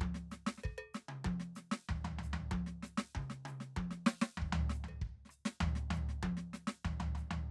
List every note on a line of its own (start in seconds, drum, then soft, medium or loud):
0.01 kick soft
0.01 high tom medium
0.07 kick soft
0.15 snare soft
0.32 snare soft
0.32 hi-hat pedal soft
0.47 snare medium
0.58 snare soft
0.64 kick soft
0.64 percussion medium
0.78 percussion medium
0.94 snare soft
0.94 hi-hat pedal soft
1.09 mid tom medium
1.25 kick soft
1.25 high tom loud
1.40 snare soft
1.56 snare soft
1.56 hi-hat pedal medium
1.72 snare medium
1.89 kick soft
1.89 floor tom medium
2.05 floor tom medium
2.19 floor tom medium
2.24 hi-hat pedal soft
2.34 floor tom medium
2.52 kick soft
2.52 high tom loud
2.58 kick soft
2.67 snare soft
2.83 snare soft
2.83 hi-hat pedal medium
2.98 snare medium
3.15 kick soft
3.15 mid tom medium
3.23 kick soft
3.30 snare soft
3.46 hi-hat pedal soft
3.46 mid tom medium
3.61 snare soft
3.77 kick soft
3.77 high tom medium
3.83 kick soft
3.91 snare soft
4.07 snare loud
4.07 hi-hat pedal medium
4.22 snare medium
4.38 floor tom medium
4.42 kick soft
4.53 floor tom loud
4.70 snare soft
4.70 hi-hat pedal soft
4.85 floor tom medium
4.89 percussion soft
5.02 kick soft
5.26 snare soft
5.30 cross-stick soft
5.30 hi-hat pedal soft
5.46 snare medium
5.61 kick soft
5.61 floor tom loud
5.69 kick soft
5.76 snare soft
5.91 floor tom loud
5.91 hi-hat pedal soft
6.10 snare soft
6.23 kick soft
6.23 high tom loud
6.29 kick soft
6.38 snare soft
6.54 snare soft
6.54 hi-hat pedal soft
6.68 snare medium
6.85 kick soft
6.85 floor tom medium
7.01 floor tom medium
7.15 floor tom medium
7.15 hi-hat pedal soft
7.31 floor tom medium